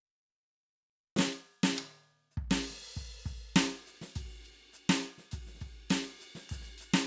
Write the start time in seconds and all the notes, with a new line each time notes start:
1.16 snare, hi-hat pedal
1.19 snare
1.20 snare
1.27 snare
1.40 snare
1.42 snare
1.63 snare
1.72 snare, hi-hat pedal
1.78 high tom
2.31 hi-hat pedal
2.37 kick
2.44 kick
2.48 kick, snare, crash
2.58 snare
2.71 snare
2.80 snare
2.86 snare
2.96 open hi-hat, kick
3.05 kick
3.26 closed hi-hat, kick
3.32 kick
3.56 snare, ride
3.63 snare
3.86 hi-hat pedal, ride
4.01 snare
4.15 kick, hi-hat pedal, ride
4.22 kick, snare
4.25 kick, snare
4.30 snare
4.45 ride
4.73 hi-hat pedal, ride
4.89 snare
5.01 hi-hat pedal, ride
5.18 snare
5.31 kick, hi-hat pedal, ride
5.47 snare
5.55 snare, hi-hat pedal
5.61 kick, ride
5.90 snare, hi-hat pedal, ride
6.02 snare
6.21 hi-hat pedal, ride
6.35 snare
6.49 kick, snare, hi-hat pedal, ride bell
6.60 kick, snare
6.64 snare, ride
6.78 hi-hat pedal, ride
6.94 snare